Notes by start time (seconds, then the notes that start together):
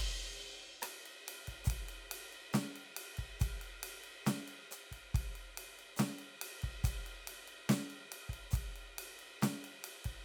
0.82 cross-stick, hi-hat pedal, ride
1.07 ride
1.29 ride
1.48 kick, ride
1.65 kick, hi-hat pedal
1.71 ride
1.89 ride
2.12 ride
2.33 ride
2.54 snare, hi-hat pedal, ride
2.77 ride
2.97 ride
3.18 kick, ride
3.41 kick, hi-hat pedal, ride
3.62 ride
3.84 ride
4.05 ride
4.27 snare, hi-hat pedal, ride
4.49 ride
4.72 hi-hat pedal, ride
4.92 kick, ride
5.15 kick, hi-hat pedal, ride
5.36 ride
5.58 ride
5.80 ride
5.97 snare, hi-hat pedal, ride
6.20 ride
6.42 ride
6.63 kick, ride
6.85 kick, hi-hat pedal, ride
7.07 ride
7.28 ride
7.49 ride
7.70 snare, hi-hat pedal, ride
7.91 ride
8.13 ride
8.30 kick
8.34 ride
8.52 kick, hi-hat pedal
8.56 ride
8.77 ride
8.99 ride
9.20 ride
9.43 snare, hi-hat pedal, ride
9.65 ride
9.83 hi-hat pedal, ride
10.05 kick, ride